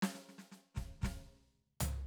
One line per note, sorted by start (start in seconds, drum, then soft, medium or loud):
0.02 snare medium
0.14 snare soft
0.28 snare soft
0.38 snare soft
0.52 snare soft
0.74 kick soft
0.74 snare soft
1.01 kick medium
1.01 snare soft
1.04 snare medium
1.80 open hi-hat loud
1.80 floor tom loud